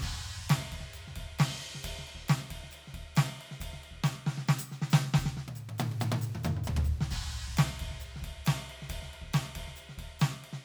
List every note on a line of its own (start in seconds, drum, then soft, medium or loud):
0.01 kick medium
0.01 percussion soft
0.01 crash loud
0.13 snare soft
0.16 snare soft
0.19 snare soft
0.39 kick soft
0.50 snare loud
0.50 ride loud
0.50 percussion medium
0.72 kick soft
0.72 ride medium
0.78 kick soft
0.78 snare soft
0.94 ride medium
0.94 percussion medium
1.08 snare soft
1.16 kick soft
1.16 ride medium
1.23 kick soft
1.39 snare loud
1.39 percussion soft
1.39 ride loud
1.62 ride soft
1.75 snare soft
1.84 kick soft
1.84 ride loud
1.84 percussion soft
1.91 kick soft
1.94 kick soft
1.99 snare soft
2.07 ride soft
2.15 kick soft
2.29 snare loud
2.29 ride medium
2.29 percussion medium
2.51 kick soft
2.51 ride medium
2.57 kick soft
2.64 snare soft
2.72 ride medium
2.72 percussion soft
2.88 snare soft
2.94 kick soft
2.94 ride medium
3.16 snare loud
3.16 ride loud
3.16 percussion medium
3.41 ride medium
3.52 snare soft
3.61 kick soft
3.61 ride medium
3.61 percussion medium
3.67 kick soft
3.74 snare soft
3.84 ride soft
3.92 kick soft
3.97 kick soft
4.04 snare medium
4.04 ride medium
4.04 percussion medium
4.27 snare medium
4.38 snare medium
4.48 snare loud
4.48 percussion medium
4.59 percussion loud
4.72 snare soft
4.82 snare medium
4.91 snare loud
4.91 percussion medium
5.06 snare soft
5.14 snare loud
5.18 kick soft
5.18 percussion medium
5.25 kick soft
5.25 snare medium
5.37 snare medium
5.48 high tom medium
5.56 percussion medium
5.61 high tom soft
5.69 high tom medium
5.79 high tom loud
5.79 percussion medium
5.92 high tom medium
6.01 high tom loud
6.01 percussion medium
6.12 high tom loud
6.22 percussion medium
6.35 mid tom medium
6.44 percussion medium
6.57 mid tom medium
6.64 kick soft
6.64 floor tom loud
6.64 percussion medium
6.77 floor tom loud
6.85 kick soft
6.85 percussion medium
6.94 kick soft
7.01 snare medium
7.11 kick medium
7.11 percussion soft
7.11 crash loud
7.26 kick soft
7.26 cross-stick soft
7.48 kick soft
7.53 kick soft
7.58 snare loud
7.58 ride loud
7.58 percussion medium
7.65 snare soft
7.80 kick soft
7.80 ride medium
7.87 kick soft
7.92 snare soft
8.01 ride soft
8.01 percussion medium
8.16 snare soft
8.23 kick soft
8.23 ride medium
8.29 kick soft
8.45 snare loud
8.45 ride loud
8.45 percussion medium
8.70 ride medium
8.82 snare soft
8.90 kick soft
8.90 ride loud
8.90 percussion soft
8.97 kick soft
9.03 snare soft
9.10 snare soft
9.10 ride soft
9.22 kick soft
9.28 kick soft
9.34 snare medium
9.34 ride loud
9.34 percussion medium
9.56 kick soft
9.56 ride medium
9.63 kick soft
9.68 snare soft
9.76 ride soft
9.76 percussion medium
9.90 snare soft
9.98 kick soft
9.98 ride medium
10.04 kick soft
10.20 snare loud
10.20 ride medium
10.20 percussion medium
10.44 ride medium
10.53 snare medium